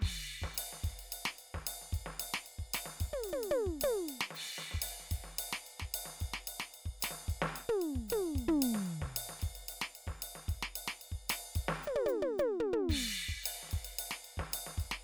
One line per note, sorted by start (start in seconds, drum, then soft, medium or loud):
0.01 kick medium
0.01 snare soft
0.01 crash medium
0.15 kick soft
0.42 kick soft
0.42 snare soft
0.53 hi-hat pedal medium
0.58 ride bell loud
0.73 snare soft
0.83 kick soft
0.83 snare soft
0.83 ride soft
0.88 kick soft
0.88 snare soft
0.92 snare soft
0.99 ride medium
1.12 hi-hat pedal medium
1.12 ride loud
1.25 snare loud
1.38 ride soft
1.54 kick soft
1.54 snare soft
1.59 kick soft
1.67 hi-hat pedal medium
1.67 ride bell loud
1.81 snare soft
1.92 kick soft
1.92 ride soft
1.99 kick soft
2.06 snare soft
2.19 hi-hat pedal medium
2.19 ride bell loud
2.34 snare loud
2.46 ride soft
2.58 kick soft
2.73 snare medium
2.73 hi-hat pedal medium
2.73 ride bell loud
2.85 snare soft
3.00 kick soft
3.00 ride medium
3.06 kick soft
3.13 high tom medium
3.23 ride medium
3.28 hi-hat pedal medium
3.32 high tom medium
3.43 ride medium
3.50 high tom loud
3.66 kick soft
3.80 hi-hat pedal medium
3.80 high tom loud
3.80 ride bell loud
4.08 ride medium
4.21 snare loud
4.30 snare soft
4.30 crash medium
4.34 hi-hat pedal medium
4.58 snare soft
4.71 kick soft
4.71 snare soft
4.81 snare soft
4.81 ride bell loud
4.87 hi-hat pedal medium
5.00 snare soft
5.11 kick soft
5.11 ride medium
5.17 kick soft
5.24 snare soft
5.29 snare soft
5.32 snare soft
5.38 hi-hat pedal medium
5.38 ride bell loud
5.52 snare loud
5.66 ride soft
5.79 kick soft
5.79 snare medium
5.94 hi-hat pedal medium
5.94 ride bell loud
6.05 snare soft
6.20 kick soft
6.20 ride soft
6.28 kick soft
6.33 snare medium
6.47 hi-hat pedal medium
6.47 ride bell loud
6.60 snare medium
6.74 ride soft
6.85 kick soft
7.00 snare medium
7.00 hi-hat pedal medium
7.00 ride bell loud
7.10 snare soft
7.28 kick soft
7.28 ride soft
7.34 kick soft
7.42 snare medium
7.55 hi-hat pedal medium
7.55 ride medium
7.68 mid tom loud
7.81 ride medium
7.95 kick soft
8.08 hi-hat pedal medium
8.08 mid tom loud
8.08 ride bell loud
8.35 kick soft
8.35 ride medium
8.41 kick soft
8.47 floor tom loud
8.62 hi-hat pedal medium
8.62 ride loud
8.74 snare soft
8.86 ride soft
9.01 kick soft
9.01 snare soft
9.16 hi-hat pedal medium
9.16 ride bell loud
9.29 snare soft
9.39 kick soft
9.39 snare soft
9.39 ride medium
9.49 kick soft
9.55 snare soft
9.55 ride medium
9.60 snare soft
9.68 hi-hat pedal medium
9.68 ride medium
9.81 snare loud
9.95 ride medium
10.07 kick soft
10.07 snare soft
10.12 kick soft
10.22 hi-hat pedal medium
10.22 ride bell loud
10.35 snare soft
10.48 kick soft
10.48 ride soft
10.54 kick soft
10.62 snare loud
10.75 hi-hat pedal medium
10.75 ride bell loud
10.87 snare loud
11.01 ride medium
11.11 kick soft
11.28 snare loud
11.28 hi-hat pedal medium
11.28 ride bell loud
11.55 kick soft
11.55 ride medium
11.68 snare medium
11.83 hi-hat pedal loud
11.87 high tom medium
11.95 high tom loud
12.05 hi-hat pedal loud
12.05 high tom loud
12.22 high tom loud
12.38 hi-hat pedal medium
12.38 high tom loud
12.59 mid tom loud
12.73 mid tom loud
12.89 kick soft
12.89 hi-hat pedal medium
12.89 crash loud
13.28 kick soft
13.33 kick soft
13.43 hi-hat pedal medium
13.43 ride bell loud
13.63 snare soft
13.69 snare soft
13.69 ride medium
13.73 kick soft
13.73 snare soft
13.83 snare soft
13.83 ride medium
13.98 hi-hat pedal medium
13.98 ride bell loud
14.11 snare medium
14.24 ride soft
14.37 kick soft
14.37 snare medium
14.52 hi-hat pedal medium
14.52 ride bell loud
14.66 snare soft
14.77 kick soft
14.77 ride soft
14.84 kick soft
14.91 snare loud